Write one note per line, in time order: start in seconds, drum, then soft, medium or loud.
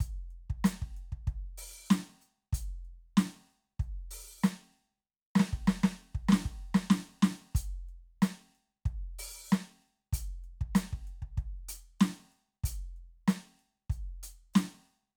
0.01 closed hi-hat medium
0.01 kick medium
0.32 closed hi-hat soft
0.51 kick medium
0.65 closed hi-hat loud
0.65 snare loud
0.83 kick medium
0.98 closed hi-hat soft
1.13 kick soft
1.28 kick medium
1.28 closed hi-hat soft
1.59 open hi-hat loud
1.91 closed hi-hat medium
1.91 snare loud
1.91 hi-hat pedal medium
2.22 closed hi-hat soft
2.54 closed hi-hat loud
2.54 kick medium
2.86 closed hi-hat soft
3.18 closed hi-hat medium
3.18 snare loud
3.51 closed hi-hat soft
3.80 closed hi-hat soft
3.80 kick medium
4.12 open hi-hat loud
4.44 closed hi-hat medium
4.44 snare loud
4.44 hi-hat pedal medium
5.36 snare loud
5.36 hi-hat pedal soft
5.40 snare loud
5.54 kick medium
5.68 snare loud
5.84 snare loud
6.16 kick medium
6.30 snare loud
6.33 snare loud
6.46 kick medium
6.75 snare loud
6.91 snare loud
7.23 snare loud
7.56 closed hi-hat loud
7.56 kick medium
7.90 closed hi-hat soft
8.23 closed hi-hat medium
8.23 snare loud
8.56 closed hi-hat soft
8.86 kick medium
8.86 closed hi-hat soft
9.20 open hi-hat loud
9.51 snare loud
9.51 closed hi-hat medium
9.51 hi-hat pedal medium
9.83 closed hi-hat soft
10.14 closed hi-hat loud
10.14 kick medium
10.45 closed hi-hat soft
10.62 kick medium
10.76 closed hi-hat loud
10.76 snare loud
10.94 kick medium
11.08 closed hi-hat soft
11.23 kick soft
11.38 kick medium
11.38 closed hi-hat soft
11.70 open hi-hat loud
12.01 snare loud
12.01 closed hi-hat soft
12.01 hi-hat pedal soft
12.33 closed hi-hat soft
12.65 closed hi-hat loud
12.65 kick medium
12.97 closed hi-hat soft
13.29 closed hi-hat medium
13.29 snare loud
13.60 closed hi-hat soft
13.91 closed hi-hat soft
13.91 kick medium
14.24 open hi-hat loud
14.55 closed hi-hat medium
14.55 snare loud
14.55 hi-hat pedal soft